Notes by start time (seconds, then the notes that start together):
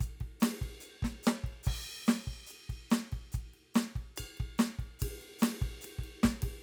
0.01 kick, hi-hat pedal, ride bell
0.21 kick, ride
0.41 snare, hi-hat pedal, ride
0.62 kick, ride
0.81 hi-hat pedal
0.86 ride bell
1.03 kick, snare, ride
1.24 snare, hi-hat pedal, ride bell
1.44 kick, ride
1.64 kick, hi-hat pedal, crash
1.85 ride
2.06 snare, hi-hat pedal, ride bell
2.28 kick, ride
2.47 hi-hat pedal
2.51 ride bell
2.70 kick, ride
2.91 snare, hi-hat pedal, ride bell
3.12 kick, ride
3.33 kick, hi-hat pedal, ride bell
3.54 ride
3.75 snare, hi-hat pedal, ride bell
3.96 kick, ride
4.17 kick, hi-hat pedal, ride bell
4.38 kick, ride
4.59 snare, hi-hat pedal, ride bell
4.79 kick, ride
5.00 kick, hi-hat pedal, ride
5.22 ride
5.39 snare, hi-hat pedal
5.44 ride
5.62 kick, ride
5.82 hi-hat pedal, ride
5.99 kick
6.04 ride
6.24 kick, snare, ride bell
6.43 kick, ride